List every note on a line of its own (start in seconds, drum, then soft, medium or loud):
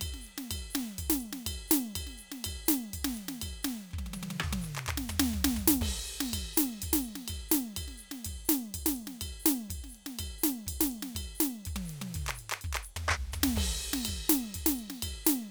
0.01 kick soft
0.01 ride bell loud
0.08 kick soft
0.14 snare soft
0.21 hi-hat pedal medium
0.27 ride soft
0.38 snare medium
0.51 kick soft
0.51 ride bell loud
0.70 hi-hat pedal medium
0.75 snare medium
0.98 kick soft
0.98 ride bell medium
1.04 kick soft
1.10 snare medium
1.18 hi-hat pedal medium
1.18 ride medium
1.33 snare medium
1.42 hi-hat pedal soft
1.46 kick soft
1.46 ride bell loud
1.52 kick soft
1.68 snare loud
1.68 hi-hat pedal medium
1.90 hi-hat pedal soft
1.95 kick soft
1.95 ride bell loud
2.02 kick soft
2.07 snare soft
2.18 hi-hat pedal medium
2.18 ride soft
2.32 snare medium
2.44 kick soft
2.44 ride bell loud
2.52 kick soft
2.66 snare loud
2.66 hi-hat pedal medium
2.93 kick soft
2.93 ride bell medium
2.99 kick soft
3.04 snare medium
3.13 hi-hat pedal medium
3.17 ride soft
3.28 snare medium
3.42 kick soft
3.42 ride bell loud
3.48 kick soft
3.63 snare medium
3.63 hi-hat pedal medium
3.91 kick soft
3.91 high tom soft
3.98 kick soft
3.98 high tom medium
4.06 high tom soft
4.13 hi-hat pedal medium
4.13 high tom medium
4.23 high tom medium
4.30 high tom medium
4.40 kick soft
4.40 cross-stick loud
4.50 kick soft
4.50 high tom loud
4.62 hi-hat pedal medium
4.62 mid tom soft
4.75 percussion loud
4.86 kick soft
4.86 percussion loud
4.94 kick soft
4.94 snare medium
5.08 floor tom loud
5.08 hi-hat pedal medium
5.20 snare loud
5.33 kick soft
5.33 floor tom soft
5.44 snare loud
5.56 kick soft
5.56 floor tom medium
5.56 hi-hat pedal medium
5.68 snare loud
5.81 kick medium
5.81 crash medium
5.94 kick soft
6.04 hi-hat pedal medium
6.20 snare medium
6.33 kick soft
6.33 ride bell loud
6.39 kick soft
6.53 hi-hat pedal medium
6.57 snare loud
6.82 kick soft
6.82 ride bell medium
6.89 kick soft
6.93 snare loud
7.02 hi-hat pedal medium
7.02 ride soft
7.15 snare medium
7.28 kick soft
7.28 ride bell loud
7.49 snare loud
7.49 hi-hat pedal medium
7.76 kick soft
7.76 ride bell loud
7.88 snare soft
7.97 hi-hat pedal medium
7.97 ride soft
8.11 snare medium
8.25 kick soft
8.25 ride bell medium
8.31 kick soft
8.45 hi-hat pedal medium
8.49 snare loud
8.74 kick soft
8.74 ride bell medium
8.80 kick soft
8.86 snare medium
8.92 hi-hat pedal medium
8.96 ride soft
9.07 snare medium
9.21 kick soft
9.21 ride bell loud
9.27 kick soft
9.40 hi-hat pedal medium
9.46 snare loud
9.70 kick soft
9.70 ride bell medium
9.75 kick soft
9.84 snare soft
9.89 hi-hat pedal medium
9.95 ride soft
10.06 snare medium
10.19 kick soft
10.19 ride bell loud
10.38 hi-hat pedal medium
10.43 snare medium
10.67 kick soft
10.67 ride bell loud
10.72 kick soft
10.81 snare medium
10.86 hi-hat pedal medium
10.91 ride soft
11.02 snare medium
11.15 kick soft
11.15 ride bell loud
11.21 kick soft
11.35 hi-hat pedal medium
11.40 snare medium
11.65 kick soft
11.65 ride bell medium
11.72 kick soft
11.72 high tom medium
11.85 hi-hat pedal medium
11.89 ride medium
12.01 high tom medium
12.14 kick soft
12.14 ride bell medium
12.21 kick soft
12.26 percussion loud
12.35 hi-hat pedal medium
12.39 ride bell soft
12.49 percussion loud
12.61 kick soft
12.61 ride bell soft
12.70 kick soft
12.70 percussion loud
12.83 hi-hat pedal medium
12.83 ride soft
12.96 floor tom loud
13.08 kick soft
13.08 percussion loud
13.17 kick soft
13.32 floor tom medium
13.32 hi-hat pedal medium
13.43 snare loud
13.56 kick medium
13.56 crash loud
13.61 kick soft
13.68 kick soft
13.81 hi-hat pedal medium
13.93 snare medium
14.05 kick soft
14.05 ride bell loud
14.14 kick soft
14.28 snare loud
14.28 hi-hat pedal medium
14.54 kick soft
14.54 ride bell medium
14.66 snare loud
14.75 hi-hat pedal medium
14.75 ride soft
14.90 snare medium
15.02 kick soft
15.02 ride bell loud
15.08 kick soft
15.25 snare loud
15.25 hi-hat pedal medium